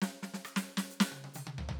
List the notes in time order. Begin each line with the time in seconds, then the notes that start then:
0.02 snare
0.22 snare
0.34 snare
0.45 cross-stick, hi-hat pedal
0.56 snare
0.77 snare
0.90 hi-hat pedal
1.00 snare
1.12 high tom
1.24 high tom
1.34 hi-hat pedal, high tom
1.47 high tom
1.58 floor tom
1.69 floor tom